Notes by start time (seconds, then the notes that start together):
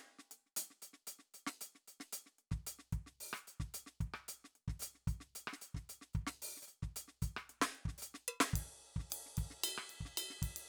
0.19 snare
0.31 closed hi-hat
0.46 snare
0.56 closed hi-hat
0.70 snare
0.82 closed hi-hat
0.93 snare
1.07 closed hi-hat
1.19 snare
1.34 closed hi-hat
1.47 snare
1.61 closed hi-hat
1.75 snare
1.87 closed hi-hat
2.00 snare
2.12 closed hi-hat
2.26 snare
2.38 closed hi-hat
2.51 kick, snare
2.66 closed hi-hat
2.79 snare
2.92 kick, closed hi-hat
3.06 snare
3.20 open hi-hat
3.33 cross-stick, hi-hat pedal
3.47 closed hi-hat
3.60 kick, snare
3.74 closed hi-hat
3.86 snare
4.00 kick, closed hi-hat
4.07 kick
4.14 cross-stick
4.28 closed hi-hat
4.44 snare
4.55 closed hi-hat
4.68 kick, snare
4.79 closed hi-hat, hi-hat pedal
4.95 snare
5.07 closed hi-hat, kick
5.14 kick
5.20 snare
5.35 closed hi-hat
5.47 cross-stick
5.53 snare
5.61 closed hi-hat
5.74 kick, snare
5.89 closed hi-hat
6.01 snare
6.13 closed hi-hat, kick
6.21 kick
6.27 snare
6.42 open hi-hat
6.57 snare
6.62 hi-hat pedal
6.67 closed hi-hat
6.82 kick, snare
6.96 closed hi-hat
7.08 snare
7.22 closed hi-hat, kick
7.36 cross-stick
7.49 closed hi-hat
7.61 kick, snare
7.75 closed hi-hat
7.85 kick, snare
7.98 hi-hat pedal
8.02 closed hi-hat
8.14 snare
8.28 percussion
8.40 snare
8.49 hi-hat pedal
8.53 kick, ride
8.59 kick
8.96 kick, snare
9.10 hi-hat pedal, ride
9.26 snare
9.37 kick, ride
9.44 kick
9.50 snare
9.64 hi-hat pedal, ride bell
9.78 cross-stick
9.89 ride
10.00 kick
10.05 snare
10.17 hi-hat pedal, ride bell
10.30 snare
10.39 kick, cross-stick
10.43 ride
10.56 ride